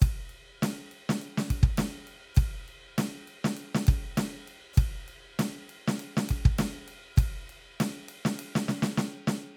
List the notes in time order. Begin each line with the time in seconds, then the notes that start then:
0.00 kick, hi-hat pedal, ride
0.29 ride
0.62 snare, ride
0.92 ride
1.09 snare
1.22 ride
1.38 snare
1.50 kick, ride
1.63 kick
1.78 snare, ride
2.07 ride
2.35 kick, hi-hat pedal, ride
2.68 ride
2.98 snare, ride
3.28 ride
3.44 snare
3.57 ride
3.75 snare
3.87 kick, ride
4.17 snare, ride
4.48 ride
4.74 hi-hat pedal
4.78 kick, ride
5.08 ride
5.39 snare, ride
5.70 ride
5.88 snare
6.00 ride
6.17 snare
6.29 kick, ride
6.45 kick
6.59 snare, ride
6.88 ride
7.16 kick, hi-hat pedal, ride
7.50 ride
7.80 snare, ride
8.09 ride
8.25 snare
8.39 ride
8.55 snare
8.68 snare
8.82 snare
8.98 snare
9.27 snare